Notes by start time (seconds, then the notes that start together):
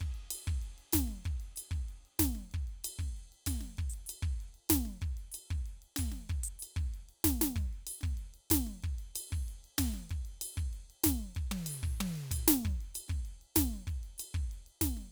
0.01 kick, ride
0.15 ride
0.31 hi-hat pedal, ride bell
0.47 kick, snare
0.62 ride
0.79 ride
0.93 kick, snare, hi-hat pedal, ride bell
1.08 snare
1.25 kick, ride
1.41 ride
1.57 hi-hat pedal, ride bell
1.72 kick, snare
1.89 ride
2.06 ride
2.20 kick, snare, hi-hat pedal, ride bell
2.36 snare
2.52 kick, ride
2.68 ride
2.85 hi-hat pedal, ride bell
2.99 kick, snare
3.17 ride
3.33 ride
3.47 kick, snare, hi-hat pedal, ride bell
3.61 snare
3.78 kick, ride
3.90 closed hi-hat
3.94 ride
4.07 hi-hat pedal, ride bell
4.23 kick
4.41 ride
4.55 ride
4.70 kick, snare, hi-hat pedal, ride bell
4.86 snare
5.02 kick, ride
5.18 ride
5.32 hi-hat pedal, ride bell
5.51 kick, snare
5.66 ride
5.83 ride
5.97 kick, snare, hi-hat pedal, ride bell
6.12 snare
6.30 kick, ride
6.44 closed hi-hat, ride
6.60 hi-hat pedal, ride bell
6.77 kick, snare
6.94 ride
7.09 ride
7.25 kick, snare, hi-hat pedal, ride bell
7.42 snare
7.56 kick, ride bell
7.73 ride
7.87 hi-hat pedal, ride bell
8.02 kick, snare
8.18 ride
8.35 ride
8.51 kick, snare, hi-hat pedal, ride bell
8.67 snare
8.83 kick, ride
8.99 ride
9.16 hi-hat pedal, ride bell
9.31 kick, snare
9.49 ride
9.65 ride
9.79 kick, snare, hi-hat pedal, ride bell
9.94 snare
10.10 kick, ride
10.26 ride
10.42 hi-hat pedal, ride bell
10.57 kick, snare
10.74 ride
10.91 ride
11.04 kick, snare, hi-hat pedal, ride bell
11.36 kick, ride
11.52 high tom, ride
11.67 hi-hat pedal, ride bell
11.84 kick
12.01 high tom, ride
12.16 ride
12.32 kick, hi-hat pedal, ride bell
12.48 snare
12.66 kick
12.81 ride
12.95 hi-hat pedal, ride bell
13.09 kick, snare
13.26 ride
13.42 ride
13.56 kick, snare, hi-hat pedal, ride bell
13.74 snare
13.88 kick, ride
13.92 snare
14.04 ride
14.19 hi-hat pedal, ride bell
14.34 kick, snare
14.52 ride
14.67 ride
14.82 kick, snare, hi-hat pedal, ride bell
14.97 snare